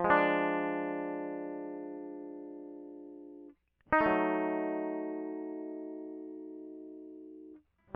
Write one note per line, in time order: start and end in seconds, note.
0.00 3.54 F3
0.06 3.53 G#3
0.11 3.56 D4
3.93 7.64 D#4
4.02 7.58 A3
4.08 7.59 F#3